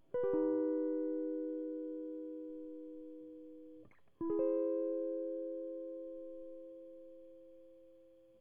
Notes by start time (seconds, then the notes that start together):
0.14 B4
0.24 G4
0.34 D#4
4.21 E4
4.30 G#4
4.39 C5